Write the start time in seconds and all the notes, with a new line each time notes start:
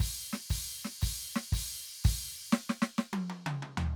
0.01 kick, crash
0.33 snare
0.50 kick, crash
0.85 snare
1.01 kick, crash
1.36 snare
1.52 kick, crash
2.04 kick, crash
2.52 snare
2.69 snare
2.82 snare
2.98 snare
3.13 high tom
3.30 high tom
3.46 mid tom
3.62 mid tom
3.77 floor tom